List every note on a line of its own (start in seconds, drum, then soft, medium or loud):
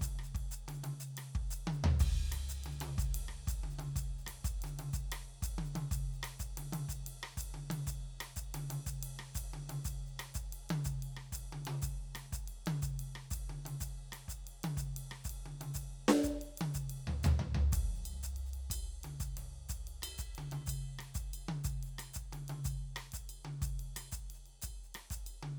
0.01 kick soft
0.01 hi-hat pedal medium
0.01 ride medium
0.19 cross-stick soft
0.23 hi-hat pedal soft
0.34 kick soft
0.34 ride soft
0.51 hi-hat pedal medium
0.68 high tom medium
0.68 ride soft
0.73 hi-hat pedal soft
0.84 high tom medium
0.84 ride medium
1.00 hi-hat pedal medium
1.17 cross-stick medium
1.17 ride medium
1.21 hi-hat pedal soft
1.35 kick medium
1.50 hi-hat pedal medium
1.50 ride medium
1.67 high tom loud
1.73 hi-hat pedal soft
1.84 floor tom loud
1.99 kick medium
1.99 hi-hat pedal medium
1.99 crash medium
2.32 cross-stick medium
2.32 ride medium
2.49 hi-hat pedal medium
2.64 high tom medium
2.64 ride soft
2.71 hi-hat pedal soft
2.80 high tom medium
2.80 ride medium
2.98 kick medium
2.98 hi-hat pedal medium
3.14 ride medium
3.28 cross-stick medium
3.47 kick medium
3.47 hi-hat pedal medium
3.47 ride medium
3.63 high tom medium
3.70 hi-hat pedal soft
3.79 high tom medium
3.79 ride soft
3.96 kick soft
3.96 hi-hat pedal medium
3.96 ride soft
4.18 hi-hat pedal soft
4.26 cross-stick medium
4.26 ride medium
4.44 kick medium
4.44 hi-hat pedal medium
4.62 hi-hat pedal soft
4.62 high tom medium
4.62 ride medium
4.79 high tom medium
4.79 ride medium
4.93 kick soft
4.93 hi-hat pedal medium
5.12 cross-stick medium
5.12 ride medium
5.42 kick soft
5.42 hi-hat pedal medium
5.42 ride medium
5.58 high tom medium
5.64 hi-hat pedal soft
5.75 high tom medium
5.75 ride soft
5.91 kick medium
5.91 hi-hat pedal medium
5.91 ride medium
6.13 hi-hat pedal soft
6.23 cross-stick medium
6.23 ride medium
6.39 kick soft
6.39 hi-hat pedal medium
6.57 high tom medium
6.57 ride medium
6.72 high tom medium
6.72 ride medium
6.88 kick soft
6.88 hi-hat pedal medium
7.06 ride medium
7.23 cross-stick medium
7.37 kick soft
7.37 hi-hat pedal medium
7.37 ride medium
7.54 high tom medium
7.70 high tom medium
7.70 ride medium
7.87 kick soft
7.87 hi-hat pedal medium
7.87 ride soft
8.20 cross-stick medium
8.20 ride medium
8.36 kick soft
8.36 hi-hat pedal medium
8.54 high tom medium
8.54 ride medium
8.70 high tom medium
8.70 ride medium
8.86 kick soft
8.86 hi-hat pedal medium
9.03 ride medium
9.19 cross-stick medium
9.35 kick soft
9.35 hi-hat pedal medium
9.35 ride medium
9.53 high tom medium
9.69 high tom medium
9.69 ride medium
9.84 kick soft
9.84 hi-hat pedal medium
9.84 ride soft
10.06 hi-hat pedal soft
10.19 cross-stick medium
10.19 ride medium
10.34 kick soft
10.34 hi-hat pedal medium
10.52 ride medium
10.69 high tom loud
10.69 ride soft
10.84 kick soft
10.84 hi-hat pedal medium
11.02 ride soft
11.17 cross-stick medium
11.32 kick soft
11.32 hi-hat pedal medium
11.32 ride medium
11.52 high tom medium
11.65 high tom medium
11.65 ride medium
11.82 kick soft
11.82 hi-hat pedal medium
11.82 ride medium
12.15 cross-stick medium
12.15 ride medium
12.32 kick soft
12.32 hi-hat pedal medium
12.48 ride soft
12.66 high tom loud
12.66 ride soft
12.82 kick soft
12.82 hi-hat pedal medium
12.99 ride medium
13.15 cross-stick medium
13.30 kick soft
13.30 hi-hat pedal medium
13.30 ride medium
13.49 high tom medium
13.65 high tom medium
13.65 ride medium
13.80 kick soft
13.80 hi-hat pedal medium
13.80 ride medium
14.12 cross-stick medium
14.12 ride medium
14.28 kick soft
14.28 hi-hat pedal medium
14.47 ride soft
14.63 high tom medium
14.63 ride medium
14.77 kick soft
14.77 hi-hat pedal medium
14.96 ride medium
15.11 cross-stick medium
15.24 kick soft
15.24 hi-hat pedal medium
15.29 ride medium
15.46 high tom medium
15.61 high tom medium
15.61 ride medium
15.74 kick soft
15.74 hi-hat pedal medium
15.74 ride medium
16.08 snare loud
16.08 ride soft
16.23 kick soft
16.23 hi-hat pedal medium
16.41 ride soft
16.57 high tom loud
16.57 ride medium
16.74 kick soft
16.74 hi-hat pedal medium
16.90 ride medium
16.96 hi-hat pedal soft
17.07 floor tom medium
17.23 floor tom loud
17.23 hi-hat pedal medium
17.39 floor tom medium
17.54 floor tom loud
17.72 kick medium
17.72 hi-hat pedal medium
17.72 ride medium
17.94 hi-hat pedal soft
18.05 ride bell medium
18.23 kick soft
18.23 hi-hat pedal medium
18.36 ride soft
18.46 hi-hat pedal soft
18.53 ride soft
18.70 kick soft
18.70 hi-hat pedal medium
18.70 ride bell medium
19.03 high tom medium
19.03 ride soft
19.20 kick soft
19.20 hi-hat pedal medium
19.20 ride soft
19.37 snare soft
19.37 ride medium
19.37 floor tom soft
19.69 kick soft
19.69 hi-hat pedal medium
19.69 ride soft
19.87 ride soft
20.02 cross-stick medium
20.02 ride bell loud
20.18 kick soft
20.18 hi-hat pedal medium
20.35 high tom medium
20.35 ride soft
20.39 hi-hat pedal soft
20.51 high tom medium
20.51 ride soft
20.66 kick soft
20.66 hi-hat pedal medium
20.66 ride bell medium
20.99 cross-stick medium
20.99 ride soft
21.14 kick soft
21.14 hi-hat pedal medium
21.14 ride soft
21.33 ride bell medium
21.48 high tom medium
21.64 kick soft
21.64 hi-hat pedal medium
21.64 ride bell soft
21.83 hi-hat pedal soft
21.83 ride soft
21.98 cross-stick medium
21.98 ride bell medium
22.13 kick soft
22.13 hi-hat pedal medium
22.32 high tom medium
22.32 ride soft
22.48 high tom medium
22.48 ride soft
22.64 kick soft
22.64 hi-hat pedal medium
22.64 ride bell medium
22.96 cross-stick medium
22.96 ride soft
23.12 kick soft
23.12 hi-hat pedal medium
23.12 ride soft
23.29 ride bell soft
23.45 high tom medium
23.62 kick soft
23.62 hi-hat pedal medium
23.62 ride soft
23.79 ride soft
23.96 cross-stick medium
23.96 ride bell medium
24.12 kick soft
24.12 hi-hat pedal medium
24.30 ride soft
24.34 hi-hat pedal soft
24.46 ride soft
24.62 kick soft
24.62 hi-hat pedal medium
24.62 ride bell medium
24.84 hi-hat pedal soft
24.94 cross-stick medium
24.94 ride medium
25.10 kick soft
25.10 hi-hat pedal medium
25.10 ride soft
25.26 ride bell soft
25.43 high tom medium